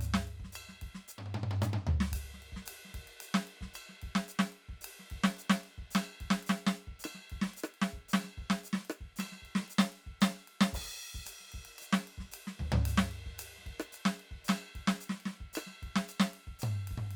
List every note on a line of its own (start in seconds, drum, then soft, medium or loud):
0.01 hi-hat pedal medium
0.01 ride medium
0.14 snare medium
0.27 ride soft
0.40 kick soft
0.44 snare soft
0.52 hi-hat pedal medium
0.52 ride bell loud
0.69 snare soft
0.82 kick soft
0.82 ride medium
0.95 snare medium
1.08 hi-hat pedal medium
1.18 mid tom medium
1.26 mid tom medium
1.34 mid tom medium
1.43 mid tom loud
1.51 mid tom medium
1.62 hi-hat pedal medium
1.62 mid tom loud
1.73 mid tom loud
1.87 floor tom loud
2.00 snare loud
2.12 kick soft
2.12 hi-hat pedal medium
2.12 ride loud
2.24 kick soft
2.34 snare soft
2.42 ride soft
2.52 kick soft
2.56 snare medium
2.66 hi-hat pedal medium
2.66 ride loud
2.85 snare soft
2.89 snare soft
2.91 kick soft
2.91 snare soft
2.91 ride medium
3.00 kick soft
3.07 ride medium
3.20 hi-hat pedal medium
3.20 ride loud
3.34 snare loud
3.47 ride medium
3.61 kick soft
3.61 snare soft
3.74 hi-hat pedal medium
3.74 ride bell loud
3.89 snare soft
4.02 kick soft
4.02 ride medium
4.15 snare medium
4.28 hi-hat pedal medium
4.28 ride medium
4.39 snare loud
4.52 ride soft
4.69 kick soft
4.69 snare soft
4.81 hi-hat pedal medium
4.81 ride loud
4.99 snare soft
5.10 kick soft
5.10 ride medium
5.24 snare loud
5.37 hi-hat pedal medium
5.37 ride soft
5.50 snare loud
5.64 ride soft
5.78 kick soft
5.91 hi-hat pedal medium
5.95 snare loud
5.95 ride bell loud
6.21 kick soft
6.21 ride medium
6.30 snare loud
6.43 hi-hat pedal medium
6.43 ride medium
6.49 snare loud
6.58 ride soft
6.67 snare loud
6.87 kick soft
6.99 hi-hat pedal medium
7.04 cross-stick medium
7.04 ride bell loud
7.15 snare soft
7.30 kick soft
7.30 ride medium
7.37 kick soft
7.42 snare loud
7.54 hi-hat pedal medium
7.54 ride medium
7.64 cross-stick medium
7.74 ride soft
7.82 snare medium
7.93 kick soft
8.09 hi-hat pedal medium
8.14 snare loud
8.14 ride bell loud
8.24 snare soft
8.38 kick soft
8.38 ride soft
8.50 snare loud
8.64 hi-hat pedal medium
8.64 ride soft
8.73 snare loud
8.85 ride medium
8.90 cross-stick medium
9.01 kick soft
9.16 snare medium
9.16 hi-hat pedal medium
9.20 ride bell loud
9.32 snare soft
9.42 kick soft
9.42 ride soft
9.55 snare loud
9.68 hi-hat pedal medium
9.68 ride soft
9.79 snare loud
9.92 ride soft
10.06 kick soft
10.21 snare loud
10.21 hi-hat pedal medium
10.21 ride bell medium
10.31 snare soft
10.48 ride medium
10.61 snare loud
10.73 kick soft
10.73 hi-hat pedal medium
10.73 crash loud
10.85 kick soft
11.15 kick soft
11.26 hi-hat pedal medium
11.26 ride loud
11.40 snare soft
11.46 snare soft
11.52 kick soft
11.52 snare soft
11.52 ride medium
11.54 snare soft
11.65 ride medium
11.78 hi-hat pedal medium
11.78 ride bell medium
11.93 snare loud
12.07 ride medium
12.18 kick soft
12.18 snare soft
12.32 hi-hat pedal medium
12.32 ride loud
12.47 snare medium
12.59 kick soft
12.59 floor tom medium
12.72 floor tom loud
12.86 hi-hat pedal medium
12.86 ride loud
12.98 snare loud
13.11 ride soft
13.26 kick soft
13.39 hi-hat pedal medium
13.39 ride loud
13.58 snare soft
13.66 kick soft
13.66 ride soft
13.80 cross-stick medium
13.92 hi-hat pedal medium
13.92 ride medium
14.05 snare loud
14.20 ride soft
14.31 kick soft
14.45 hi-hat pedal medium
14.45 ride bell loud
14.49 snare loud
14.75 kick soft
14.75 ride medium
14.88 snare loud
15.01 hi-hat pedal medium
15.01 ride bell medium
15.10 snare medium
15.20 ride soft
15.26 snare medium
15.40 kick soft
15.53 hi-hat pedal medium
15.53 ride bell loud
15.57 cross-stick medium
15.67 snare soft
15.82 kick soft
15.82 ride soft
15.96 snare medium
16.08 hi-hat pedal medium
16.08 ride bell medium
16.20 snare loud
16.34 ride medium
16.47 kick soft
16.59 hi-hat pedal medium
16.59 ride bell loud
16.63 mid tom loud
16.87 kick soft
16.87 ride medium
16.97 kick soft
16.97 mid tom loud
17.11 ride medium